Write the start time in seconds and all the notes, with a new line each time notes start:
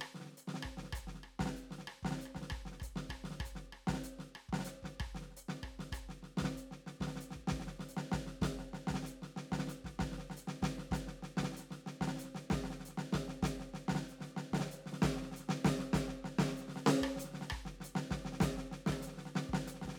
0.01 cross-stick
0.14 snare
0.20 snare
0.25 snare
0.32 snare
0.37 cross-stick, hi-hat pedal
0.48 snare
0.54 snare
0.63 kick, cross-stick
0.77 snare
0.83 snare
0.93 kick, cross-stick, hi-hat pedal
1.07 snare
1.14 snare
1.23 cross-stick
1.39 kick, snare
1.46 snare
1.55 snare, hi-hat pedal
1.62 snare
1.71 snare
1.79 snare
1.87 cross-stick
2.03 kick, snare
2.11 snare
2.17 snare, hi-hat pedal
2.26 cross-stick
2.35 kick, snare
2.42 snare
2.50 kick, cross-stick
2.65 snare
2.72 snare
2.80 kick, cross-stick, hi-hat pedal
2.96 snare
3.09 kick, cross-stick
3.24 snare
3.30 snare
3.40 kick, cross-stick
3.45 kick, hi-hat pedal
3.55 snare
3.73 cross-stick
3.87 kick, snare
3.94 snare
4.03 snare, hi-hat pedal
4.11 snare
4.19 snare
4.35 cross-stick
4.49 kick
4.53 snare
4.59 snare
4.65 snare, hi-hat pedal
4.83 kick, snare
5.00 kick, cross-stick
5.15 snare
5.21 snare
5.31 snare
5.37 hi-hat pedal
5.49 snare
5.63 kick, cross-stick
5.79 snare
5.92 kick, cross-stick, hi-hat pedal
6.09 snare
6.23 snare
6.37 kick, snare
6.44 snare
6.53 snare
6.57 hi-hat pedal
6.71 snare
6.86 snare
7.00 kick, snare
7.07 snare
7.16 snare
7.21 hi-hat pedal
7.31 snare
7.36 kick
7.47 snare
7.52 kick
7.60 snare
7.67 snare
7.79 snare
7.89 hi-hat pedal
7.97 snare
8.12 kick, snare
8.26 snare
8.41 kick, snare, hi-hat pedal
8.59 snare
8.73 snare
8.87 kick, snare
8.94 snare
9.03 snare, hi-hat pedal
9.22 snare
9.36 snare
9.52 kick, snare
9.59 snare
9.67 snare, hi-hat pedal
9.84 kick, snare
9.99 kick, snare
10.12 snare
10.18 snare
10.30 snare
10.37 hi-hat pedal
10.47 snare
10.62 kick, snare
10.78 snare
10.91 kick, snare, hi-hat pedal
11.07 snare
11.23 snare
11.37 kick, snare
11.43 snare
11.52 snare
11.57 snare, hi-hat pedal
11.71 snare
11.86 snare
12.01 kick, snare
12.08 snare
12.16 snare, hi-hat pedal
12.24 snare
12.35 snare
12.50 kick, snare
12.59 kick
12.64 snare
12.70 snare
12.80 snare
12.85 snare, hi-hat pedal
12.98 snare
13.13 kick, snare
13.28 snare
13.42 kick, snare, hi-hat pedal
13.60 snare
13.74 snare
13.88 kick, snare
13.95 snare
14.03 snare
14.09 snare, hi-hat pedal
14.19 snare
14.37 snare
14.52 kick, snare
14.60 snare
14.66 snare
14.71 snare, hi-hat pedal
14.79 snare
14.84 snare
14.86 snare
14.93 snare
15.02 kick, snare
15.09 kick
15.16 snare
15.22 snare
15.32 snare
15.36 snare, hi-hat pedal
15.48 snare
15.65 kick, snare
15.79 snare
15.93 kick, snare, hi-hat pedal
16.08 snare
16.24 snare
16.38 kick, snare
16.47 snare
16.51 snare
16.57 snare, hi-hat pedal
16.67 snare
16.68 snare
16.76 snare
16.86 snare
17.01 kick, cross-stick
17.16 snare, hi-hat pedal
17.24 snare
17.30 snare
17.34 snare
17.41 snare
17.50 kick, cross-stick
17.65 snare
17.80 snare, hi-hat pedal
17.95 snare
18.11 kick, snare
18.25 snare
18.32 snare
18.40 kick, snare, hi-hat pedal
18.50 kick
18.57 snare
18.71 snare
18.86 kick, snare
18.92 cross-stick
19.00 snare, hi-hat pedal
19.07 snare
19.12 snare
19.17 snare
19.25 snare
19.35 snare
19.49 kick
19.53 snare
19.66 snare, hi-hat pedal
19.74 snare
19.82 kick, snare
19.88 snare
19.93 snare